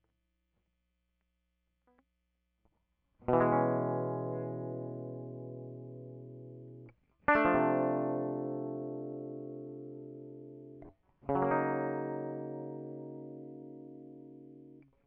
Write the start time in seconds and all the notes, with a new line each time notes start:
3.29 B2
3.34 E3
3.41 G#3
7.28 D4
7.35 A3
7.45 F3
7.55 C3
11.30 C#3
11.36 F#3
11.42 A#3
11.51 D#4